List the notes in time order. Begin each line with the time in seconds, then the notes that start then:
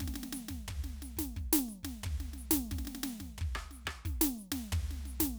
0.01 kick, snare
0.08 snare
0.15 snare
0.16 snare
0.24 snare
0.33 snare, hi-hat pedal
0.49 kick, snare
0.69 kick, floor tom
0.85 snare
1.03 snare, hi-hat pedal
1.18 kick, snare
1.37 kick, snare
1.54 snare
1.69 snare, hi-hat pedal
1.84 kick, snare
2.04 kick, floor tom
2.21 snare
2.34 snare
2.39 hi-hat pedal
2.52 kick, snare
2.72 kick, snare
2.79 snare
2.86 snare
2.88 snare
2.96 snare
3.04 snare, hi-hat pedal
3.21 kick, snare
3.39 kick, floor tom
3.56 cross-stick
3.72 snare, hi-hat pedal
3.86 kick, cross-stick
4.06 kick, snare
4.22 snare
4.37 snare, hi-hat pedal
4.53 kick, snare
4.73 kick, floor tom
4.91 snare
5.06 snare, hi-hat pedal
5.20 kick, snare